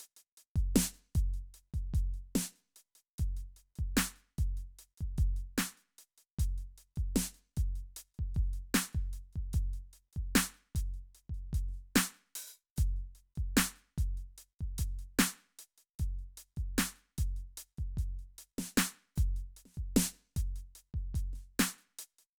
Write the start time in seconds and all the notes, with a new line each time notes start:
0.01 closed hi-hat
0.16 closed hi-hat
0.37 closed hi-hat
0.56 kick, closed hi-hat
0.76 snare, closed hi-hat
0.94 closed hi-hat
1.15 kick, closed hi-hat
1.34 closed hi-hat
1.54 closed hi-hat
1.74 kick, closed hi-hat
1.94 kick, closed hi-hat
2.14 closed hi-hat
2.35 snare, closed hi-hat
2.56 closed hi-hat
2.76 closed hi-hat
2.95 closed hi-hat
3.18 kick, closed hi-hat
3.37 closed hi-hat
3.56 closed hi-hat
3.75 kick, closed hi-hat
3.97 closed hi-hat, snare
4.16 closed hi-hat
4.38 kick, closed hi-hat
4.57 closed hi-hat
4.79 closed hi-hat
4.97 kick, closed hi-hat
5.18 kick, closed hi-hat
5.36 closed hi-hat
5.58 snare, closed hi-hat
5.77 closed hi-hat
5.98 closed hi-hat
6.18 closed hi-hat
6.39 closed hi-hat, kick
6.58 closed hi-hat
6.78 closed hi-hat
6.96 kick, closed hi-hat
7.16 closed hi-hat, snare
7.34 closed hi-hat
7.57 kick, closed hi-hat
7.75 closed hi-hat
7.96 closed hi-hat
8.14 closed hi-hat
8.19 kick
8.34 kick, snare, closed hi-hat
8.53 closed hi-hat
8.74 closed hi-hat, snare
8.93 kick, closed hi-hat
9.13 closed hi-hat
9.33 kick, closed hi-hat
9.53 kick, closed hi-hat
9.73 closed hi-hat
9.93 closed hi-hat
10.13 kick, closed hi-hat
10.35 closed hi-hat, snare
10.54 closed hi-hat
10.75 closed hi-hat, kick
10.94 closed hi-hat
11.15 closed hi-hat
11.29 kick
11.34 closed hi-hat
11.53 kick, closed hi-hat
11.68 snare
11.74 closed hi-hat
11.95 closed hi-hat, snare
12.14 closed hi-hat
12.35 open hi-hat
12.76 closed hi-hat, kick, hi-hat pedal
12.96 closed hi-hat
13.15 closed hi-hat
13.35 kick, closed hi-hat
13.57 closed hi-hat, snare
13.76 closed hi-hat
13.98 kick, closed hi-hat
14.17 closed hi-hat
14.38 closed hi-hat
14.59 kick, closed hi-hat
14.78 closed hi-hat, kick
14.99 closed hi-hat
15.19 closed hi-hat, snare
15.38 closed hi-hat
15.59 closed hi-hat
15.78 closed hi-hat
15.99 kick, closed hi-hat
16.19 closed hi-hat
16.37 closed hi-hat
16.56 kick, closed hi-hat
16.78 closed hi-hat, snare
16.96 closed hi-hat
17.18 closed hi-hat, kick
17.36 closed hi-hat
17.57 closed hi-hat
17.77 kick, closed hi-hat
17.97 kick, closed hi-hat
18.19 closed hi-hat
18.38 closed hi-hat
18.58 snare, closed hi-hat
18.77 closed hi-hat, snare
19.16 kick, closed hi-hat, hi-hat pedal
19.36 closed hi-hat
19.56 closed hi-hat
19.65 snare
19.74 kick, closed hi-hat
19.96 closed hi-hat, snare
20.14 closed hi-hat
20.36 kick, closed hi-hat
20.56 closed hi-hat
20.75 closed hi-hat
20.94 kick, closed hi-hat
21.14 kick, closed hi-hat
21.33 snare, closed hi-hat
21.59 closed hi-hat, snare
21.78 closed hi-hat
21.99 closed hi-hat
22.18 closed hi-hat